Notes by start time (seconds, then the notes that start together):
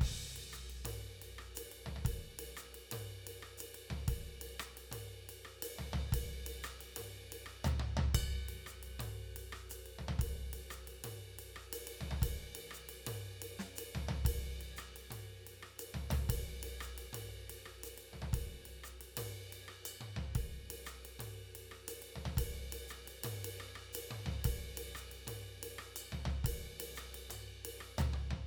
0.01 kick, ride
0.36 ride
0.52 cross-stick, hi-hat pedal
0.70 ride
0.85 mid tom, ride
1.22 ride
1.38 cross-stick
1.55 hi-hat pedal, ride
1.72 ride
1.86 floor tom
1.96 floor tom
2.05 kick, ride
2.39 ride
2.57 cross-stick, hi-hat pedal
2.74 ride
2.91 mid tom, ride
3.27 ride
3.42 cross-stick
3.58 hi-hat pedal, ride
3.74 ride
3.90 floor tom
4.08 kick, ride
4.41 ride
4.59 cross-stick, hi-hat pedal
4.77 ride
4.92 mid tom, ride
5.29 ride
5.45 cross-stick
5.62 hi-hat pedal, ride
5.78 floor tom
5.93 floor tom
6.12 kick, ride
6.46 ride
6.63 cross-stick, hi-hat pedal
6.81 ride
6.96 mid tom, ride
7.32 ride
7.46 cross-stick
7.64 floor tom, hi-hat pedal
7.80 mid tom
7.97 floor tom
8.14 kick, ride bell
8.49 ride
8.66 cross-stick, hi-hat pedal
8.83 ride
8.99 mid tom, ride
9.36 ride
9.52 cross-stick
9.69 hi-hat pedal, ride
9.86 ride
9.99 floor tom
10.08 floor tom
10.19 kick, ride
10.53 ride
10.70 cross-stick, hi-hat pedal
10.87 ride
11.04 mid tom, ride
11.39 ride
11.56 cross-stick
11.72 hi-hat pedal, ride
11.87 ride
12.01 floor tom
12.22 kick, ride
12.55 ride
12.71 cross-stick, hi-hat pedal
12.89 ride
13.07 mid tom, ride
13.42 ride
13.59 snare
13.76 hi-hat pedal, ride
13.95 floor tom
14.08 floor tom
14.25 kick, ride
14.61 ride
14.76 cross-stick, hi-hat pedal
14.96 ride
15.10 mid tom, ride
15.47 ride
15.63 cross-stick
15.79 hi-hat pedal, ride
15.94 floor tom
16.10 floor tom, ride
16.29 kick, ride
16.63 ride
16.81 cross-stick, hi-hat pedal
16.98 ride
17.13 mid tom, ride
17.50 ride
17.66 cross-stick
17.83 hi-hat pedal, ride
17.98 ride
18.13 floor tom
18.22 floor tom
18.33 kick, ride
18.65 ride
18.84 cross-stick, hi-hat pedal
19.01 ride
19.17 mid tom, ride
19.53 ride
19.68 cross-stick
19.85 hi-hat pedal, ride bell
20.01 mid tom
20.16 floor tom
20.35 kick, ride
20.70 ride
20.85 cross-stick, hi-hat pedal
21.05 ride
21.19 mid tom, ride
21.55 ride
21.71 cross-stick
21.88 hi-hat pedal, ride
22.02 ride
22.16 floor tom
22.25 floor tom
22.37 kick, ride
22.72 ride
22.88 cross-stick, hi-hat pedal
23.08 ride
23.24 mid tom, ride
23.44 ride
23.60 cross-stick
23.75 cross-stick
23.93 hi-hat pedal, ride
24.11 mid tom
24.26 floor tom
24.44 kick, ride
24.77 ride
24.95 cross-stick, hi-hat pedal
25.12 ride
25.27 mid tom, ride
25.63 ride
25.78 cross-stick
25.96 hi-hat pedal, ride bell
26.12 floor tom
26.25 floor tom
26.44 kick, ride
26.80 ride
26.96 cross-stick, hi-hat pedal
27.14 ride
27.30 mid tom, ride bell
27.65 ride
27.80 cross-stick
27.98 floor tom, hi-hat pedal
28.13 mid tom
28.31 floor tom